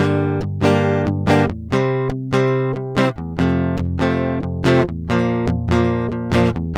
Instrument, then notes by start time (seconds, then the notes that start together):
acoustic guitar
0.00 G2 D3 G3 A#3 D4 G4
0.42 G2 D3
0.63 G2 D3 G3 A#3 D4
0.67 G4
1.09 G2 D3
1.29 G2 D3 G3 A#3 D4
1.33 G4
1.45 A2
1.74 C3 G3 C4
2.11 C3
2.35 C3 G3 C4
2.75 C3 G3
2.99 C3 G3 C4
3.12 A2
3.20 E2
3.40 F2 C3 F3 A3
3.79 F2 C3
4.01 F2 C3 F3 A3 C4
4.05 F4
4.45 F2 C3
4.66 F2 C3 F3 A3
4.70 C4
4.82 A#2
4.91 E2
5.11 A#2 F3 A#3
5.49 E2 A#2 F3
5.70 E2 A#2 F3 A#3
6.13 A#2 F3
6.33 E2 A#2 F3 A#3
6.38 D4
6.50 A#2
6.58 E2